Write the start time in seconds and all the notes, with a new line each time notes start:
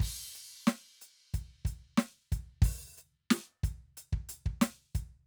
0.00 kick, crash
0.35 closed hi-hat
0.67 closed hi-hat, snare
1.01 closed hi-hat
1.34 closed hi-hat, kick
1.65 closed hi-hat, kick
1.98 closed hi-hat, snare
2.32 closed hi-hat, kick
2.62 open hi-hat, kick
2.97 open hi-hat, hi-hat pedal
3.30 closed hi-hat, snare
3.63 closed hi-hat, kick
3.97 closed hi-hat
4.13 kick
4.29 closed hi-hat
4.46 kick
4.61 closed hi-hat, snare
4.95 closed hi-hat, kick